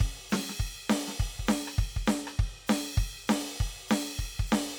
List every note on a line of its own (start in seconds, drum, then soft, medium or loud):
0.01 kick loud
0.30 snare loud
0.30 hi-hat pedal medium
0.30 crash loud
0.50 snare medium
0.60 kick medium
0.90 snare loud
0.90 hi-hat pedal medium
0.90 crash loud
1.08 snare medium
1.20 kick medium
1.40 kick medium
1.48 snare loud
1.48 hi-hat pedal medium
1.48 crash loud
1.68 cross-stick medium
1.79 kick loud
1.97 kick medium
2.07 snare loud
2.07 hi-hat pedal medium
2.07 crash medium
2.27 cross-stick medium
2.39 kick loud
2.67 snare loud
2.67 hi-hat pedal medium
2.67 crash loud
2.98 kick loud
3.28 snare loud
3.28 hi-hat pedal medium
3.28 crash loud
3.61 kick medium
3.89 snare loud
3.89 hi-hat pedal medium
3.89 crash loud
4.19 kick medium
4.40 kick medium
4.47 hi-hat pedal medium
4.52 snare loud
4.52 crash loud